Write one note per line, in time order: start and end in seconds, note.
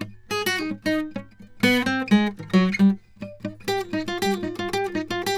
0.32 0.46 G#4
0.48 0.57 F#4
0.58 0.77 D#4
0.87 1.06 D#4
1.64 1.84 B3
1.88 2.12 C4
2.12 2.33 G#3
2.55 2.73 F#3
2.81 2.98 G3
3.69 3.81 G4
3.81 3.97 F4
3.94 4.07 D#4
4.09 4.23 F4
4.23 4.33 G4
4.33 4.60 F4
4.44 4.60 D#4
4.61 4.72 F4
4.75 4.87 G4
4.87 5.04 F4
4.96 5.07 D#4
5.12 5.26 F4
5.28 5.37 G4